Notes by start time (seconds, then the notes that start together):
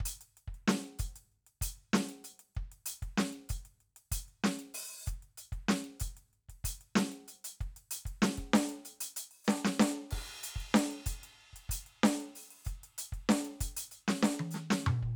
0.04 closed hi-hat, kick
0.21 closed hi-hat
0.37 closed hi-hat
0.48 kick
0.54 closed hi-hat
0.68 snare
0.83 closed hi-hat
0.99 closed hi-hat, kick
1.16 closed hi-hat
1.32 closed hi-hat
1.46 closed hi-hat
1.61 closed hi-hat, kick
1.77 closed hi-hat
1.93 snare
2.09 closed hi-hat
2.24 closed hi-hat
2.39 closed hi-hat
2.55 kick, closed hi-hat
2.72 closed hi-hat
2.86 closed hi-hat
3.02 kick, closed hi-hat
3.18 snare
3.32 closed hi-hat
3.49 closed hi-hat, kick
3.65 closed hi-hat
3.80 closed hi-hat
3.96 closed hi-hat
4.11 closed hi-hat, kick
4.28 closed hi-hat
4.44 snare
4.59 closed hi-hat
4.74 open hi-hat
5.06 open hi-hat, kick, hi-hat pedal
5.22 closed hi-hat
5.37 closed hi-hat
5.52 kick, closed hi-hat
5.68 snare
5.84 closed hi-hat
6.00 closed hi-hat, kick
6.17 closed hi-hat
6.33 closed hi-hat
6.49 kick, closed hi-hat
6.64 closed hi-hat, kick
6.81 closed hi-hat
6.95 snare
7.00 snare
7.12 closed hi-hat
7.28 closed hi-hat
7.44 closed hi-hat
7.61 kick, closed hi-hat
7.76 closed hi-hat
7.91 closed hi-hat
8.05 kick, closed hi-hat
8.22 snare
8.37 kick, closed hi-hat
8.53 snare
8.69 closed hi-hat
8.85 closed hi-hat
9.00 closed hi-hat
9.16 closed hi-hat
9.31 open hi-hat
9.44 snare, hi-hat pedal
9.65 snare
9.79 snare
10.11 kick, crash
10.28 closed hi-hat
10.43 closed hi-hat
10.56 kick
10.60 kick, closed hi-hat
10.74 snare
10.91 closed hi-hat
11.06 closed hi-hat, kick
11.23 closed hi-hat
11.40 closed hi-hat
11.53 kick, closed hi-hat
11.69 closed hi-hat, kick
11.86 closed hi-hat
12.03 snare
12.20 closed hi-hat
12.35 open hi-hat
12.51 open hi-hat
12.65 closed hi-hat, kick, hi-hat pedal
12.83 closed hi-hat
12.98 closed hi-hat
13.12 kick, closed hi-hat
13.29 snare
13.44 closed hi-hat
13.61 closed hi-hat, kick
13.76 closed hi-hat
13.91 closed hi-hat
14.08 snare
14.23 snare
14.39 high tom
14.51 snare, hi-hat pedal
14.70 snare
14.86 mid tom
15.03 kick